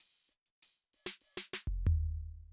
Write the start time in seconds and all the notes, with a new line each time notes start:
0.00 open hi-hat
0.28 closed hi-hat, hi-hat pedal
0.46 closed hi-hat
0.62 open hi-hat
0.93 hi-hat pedal
1.06 snare
1.21 hi-hat pedal
1.37 snare
1.54 snare
1.67 kick
1.87 floor tom